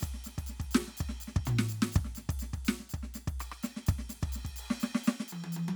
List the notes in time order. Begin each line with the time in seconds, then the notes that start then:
0.01 kick, ride, percussion
0.14 snare
0.25 snare, ride, percussion
0.39 kick, ride
0.47 snare, percussion
0.60 kick, ride
0.72 snare, percussion, ride
0.88 snare
0.98 kick, ride, percussion
1.09 snare
1.21 ride, percussion
1.28 snare
1.37 kick
1.46 floor tom, percussion
1.59 snare
1.69 ride, percussion
1.83 snare
1.93 kick, ride, percussion
2.05 snare
2.16 snare, ride, percussion
2.30 kick, ride
2.40 snare, percussion
2.54 kick, ride
2.66 snare, ride, percussion
2.80 snare
2.90 ride, percussion
2.94 kick
3.04 snare
3.15 snare, ride, percussion
3.28 kick, ride
3.40 cross-stick, percussion, ride
3.52 cross-stick
3.64 snare, percussion
3.77 snare
3.87 kick, ride, percussion
3.99 snare
4.10 snare, ride, percussion
4.23 kick, ride
4.33 snare, percussion
4.45 kick, ride
4.57 percussion, ride
4.71 snare
4.81 snare, percussion
4.95 snare
5.04 snare, percussion
5.20 snare
5.29 percussion
5.33 high tom
5.45 high tom
5.53 percussion
5.57 high tom
5.69 high tom